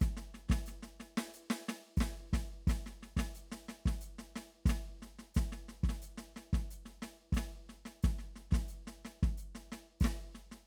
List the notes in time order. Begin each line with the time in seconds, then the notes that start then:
0.01 kick, hi-hat pedal
0.17 snare
0.34 snare
0.49 kick, snare
0.51 snare
0.66 snare, hi-hat pedal
0.83 snare
1.00 snare
1.18 snare
1.34 hi-hat pedal
1.50 snare
1.69 snare
1.97 kick, snare, hi-hat pedal
2.33 kick, snare
2.67 kick, snare, hi-hat pedal
2.86 snare
3.03 snare
3.17 kick, snare
3.19 snare
3.35 hi-hat pedal
3.52 snare
3.69 snare
3.86 kick, snare
4.01 hi-hat pedal
4.19 snare
4.36 snare
4.66 kick, snare, hi-hat pedal
4.69 snare
5.02 snare
5.19 snare
5.35 kick, snare, hi-hat pedal
5.52 snare
5.69 snare
5.84 kick, snare
5.89 snare
6.02 hi-hat pedal
6.18 snare
6.36 snare
6.53 kick, snare
6.71 hi-hat pedal
6.86 snare
7.02 snare
7.33 kick, snare, hi-hat pedal
7.37 snare
7.69 snare
7.85 snare
8.03 kick, snare, hi-hat pedal
8.19 snare
8.36 snare
8.51 kick, snare
8.54 snare
8.68 hi-hat pedal
8.87 snare
9.05 snare
9.23 kick, snare
9.38 hi-hat pedal
9.55 snare
9.72 snare
10.00 kick, snare, hi-hat pedal
10.04 snare
10.35 snare
10.52 snare